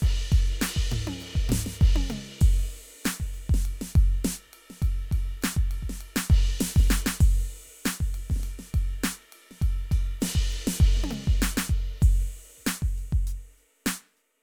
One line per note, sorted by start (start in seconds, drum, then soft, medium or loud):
0.01 kick loud
0.01 hi-hat pedal soft
0.01 ride loud
0.32 kick loud
0.32 ride loud
0.60 snare loud
0.60 hi-hat pedal medium
0.60 ride loud
0.76 kick medium
0.90 floor tom loud
0.90 hi-hat pedal medium
1.07 high tom loud
1.19 hi-hat pedal medium
1.19 ride medium
1.35 kick medium
1.49 snare loud
1.49 floor tom loud
1.49 hi-hat pedal medium
1.66 snare medium
1.79 kick loud
1.79 hi-hat pedal soft
1.79 ride loud
1.96 high tom loud
2.08 hi-hat pedal medium
2.08 mid tom loud
2.40 kick loud
2.40 hi-hat pedal soft
2.40 crash loud
3.04 snare loud
3.04 hi-hat pedal medium
3.04 ride loud
3.20 kick medium
3.33 hi-hat pedal soft
3.33 ride medium
3.49 kick loud
3.49 crash soft
3.54 snare medium
3.65 ride loud
3.81 snare medium
3.95 kick loud
3.95 ride loud
4.24 snare loud
4.24 hi-hat pedal medium
4.24 ride loud
4.46 kick soft
4.53 ride loud
4.70 snare soft
4.82 kick medium
4.82 hi-hat pedal medium
4.82 ride loud
5.11 kick medium
5.11 ride loud
5.41 snare loud
5.41 hi-hat pedal medium
5.41 ride loud
5.56 kick medium
5.70 hi-hat pedal soft
5.70 ride loud
5.82 kick medium
5.89 snare medium
5.99 hi-hat pedal soft
5.99 ride loud
6.16 snare loud
6.29 kick loud
6.29 ride loud
6.60 open hi-hat loud
6.60 snare loud
6.76 kick loud
6.76 snare soft
6.87 snare soft
6.90 snare loud
7.06 snare loud
7.20 kick loud
7.20 hi-hat pedal soft
7.20 crash loud
7.66 kick soft
7.84 snare loud
7.84 hi-hat pedal medium
7.84 ride loud
8.00 kick medium
8.14 hi-hat pedal soft
8.14 ride loud
8.30 kick medium
8.30 snare soft
8.36 snare soft
8.39 snare soft
8.43 snare soft
8.43 hi-hat pedal soft
8.43 ride loud
8.59 snare soft
8.74 kick medium
8.74 ride loud
9.03 snare loud
9.03 hi-hat pedal medium
9.03 ride loud
9.32 ride loud
9.51 snare soft
9.61 kick medium
9.61 hi-hat pedal soft
9.61 ride loud
9.91 kick medium
9.91 ride bell medium
10.20 snare loud
10.20 hi-hat pedal medium
10.20 ride loud
10.35 kick medium
10.50 hi-hat pedal medium
10.50 ride medium
10.67 snare loud
10.80 kick loud
10.80 ride loud
10.96 mid tom medium
11.04 high tom loud
11.10 hi-hat pedal medium
11.10 mid tom loud
11.27 kick loud
11.41 snare loud
11.41 hi-hat pedal medium
11.57 snare loud
11.69 kick medium
12.00 kick loud
12.00 hi-hat pedal medium
12.00 crash loud
12.58 kick soft
12.66 closed hi-hat loud
12.66 snare loud
12.82 kick medium
12.97 closed hi-hat soft
13.12 kick medium
13.27 closed hi-hat medium
13.57 closed hi-hat soft
13.86 closed hi-hat loud
13.86 snare loud
14.17 closed hi-hat soft